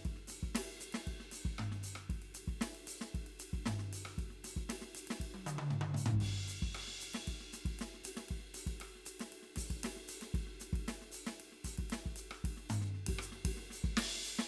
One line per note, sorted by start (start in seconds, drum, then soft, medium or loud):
0.01 hi-hat pedal soft
0.05 kick soft
0.05 ride soft
0.16 snare soft
0.27 snare soft
0.27 hi-hat pedal loud
0.27 ride medium
0.43 kick soft
0.53 snare medium
0.53 hi-hat pedal soft
0.53 ride loud
0.80 hi-hat pedal loud
0.80 ride medium
0.93 snare medium
0.93 ride medium
1.07 kick soft
1.07 ride soft
1.20 snare soft
1.32 snare soft
1.32 hi-hat pedal loud
1.32 ride medium
1.45 kick soft
1.56 cross-stick medium
1.56 floor tom medium
1.56 hi-hat pedal soft
1.72 snare soft
1.83 hi-hat pedal loud
1.83 ride medium
1.95 cross-stick medium
2.10 kick soft
2.10 ride soft
2.22 ride soft
2.34 hi-hat pedal loud
2.34 ride medium
2.48 kick soft
2.59 snare medium
2.59 hi-hat pedal soft
2.59 ride medium
2.75 ride soft
2.87 hi-hat pedal loud
2.87 ride medium
3.01 snare medium
3.14 kick soft
3.14 ride soft
3.26 ride soft
3.39 hi-hat pedal loud
3.39 ride medium
3.53 kick soft
3.66 snare medium
3.66 floor tom medium
3.79 snare soft
3.93 hi-hat pedal loud
3.93 ride medium
4.05 cross-stick medium
4.18 kick soft
4.18 ride soft
4.30 snare soft
4.44 snare soft
4.44 hi-hat pedal loud
4.44 ride medium
4.56 kick soft
4.68 snare medium
4.68 hi-hat pedal soft
4.68 ride medium
4.82 snare soft
4.95 hi-hat pedal loud
4.95 ride medium
5.07 snare medium
5.07 ride medium
5.20 kick soft
5.20 hi-hat pedal soft
5.20 ride medium
5.34 high tom medium
5.46 hi-hat pedal loud
5.46 mid tom medium
5.58 mid tom medium
5.70 floor tom medium
5.70 hi-hat pedal soft
5.81 mid tom loud
5.94 floor tom medium
5.94 hi-hat pedal medium
6.06 floor tom loud
6.14 kick soft
6.20 kick soft
6.20 hi-hat pedal medium
6.20 ride medium
6.37 cross-stick soft
6.48 hi-hat pedal loud
6.48 ride medium
6.62 kick medium
6.73 cross-stick medium
6.73 hi-hat pedal soft
6.73 ride medium
6.87 snare soft
7.00 hi-hat pedal loud
7.00 ride medium
7.14 snare medium
7.14 ride medium
7.26 kick soft
7.26 hi-hat pedal soft
7.26 ride medium
7.40 snare soft
7.53 snare soft
7.53 hi-hat pedal loud
7.53 ride medium
7.65 kick soft
7.65 ride medium
7.77 snare medium
7.77 hi-hat pedal soft
7.77 ride medium
7.94 snare soft
8.02 kick soft
8.02 hi-hat pedal loud
8.02 ride medium
8.17 snare medium
8.17 ride medium
8.27 kick soft
8.27 hi-hat pedal soft
8.27 ride medium
8.39 snare soft
8.54 snare soft
8.54 hi-hat pedal loud
8.54 ride medium
8.67 kick soft
8.67 ride medium
8.80 cross-stick medium
8.80 ride medium
8.95 snare soft
9.05 hi-hat pedal loud
9.05 ride medium
9.20 snare medium
9.20 ride medium
9.32 ride medium
9.42 snare soft
9.56 kick soft
9.56 snare soft
9.56 hi-hat pedal loud
9.56 ride medium
9.70 kick soft
9.70 ride medium
9.81 snare medium
9.81 hi-hat pedal soft
9.81 ride loud
9.96 snare soft
10.08 hi-hat pedal loud
10.08 ride medium
10.21 snare soft
10.21 ride medium
10.34 kick medium
10.34 ride medium
10.46 snare soft
10.60 snare soft
10.60 hi-hat pedal medium
10.60 ride medium
10.73 kick medium
10.73 ride medium
10.88 snare medium
10.88 ride medium
11.01 snare soft
11.12 hi-hat pedal loud
11.12 ride medium
11.27 snare medium
11.27 ride medium
11.37 hi-hat pedal soft
11.37 ride medium
11.52 snare soft
11.64 kick soft
11.64 snare soft
11.64 hi-hat pedal loud
11.64 ride medium
11.78 kick soft
11.78 ride medium
11.89 snare medium
11.89 hi-hat pedal soft
11.89 ride medium
12.06 kick soft
12.16 hi-hat pedal loud
12.16 ride medium
12.31 cross-stick medium
12.44 kick soft
12.44 ride medium
12.57 snare soft
12.69 floor tom loud
12.69 hi-hat pedal medium
12.82 snare soft
12.94 snare soft
13.07 kick medium
13.07 ride loud
13.19 cross-stick medium
13.19 hi-hat pedal loud
13.32 snare soft
13.45 kick medium
13.45 hi-hat pedal soft
13.45 ride loud
13.57 snare soft
13.70 snare soft
13.70 hi-hat pedal medium
13.84 kick medium
13.97 snare loud
13.97 ride loud
14.24 hi-hat pedal loud
14.39 snare medium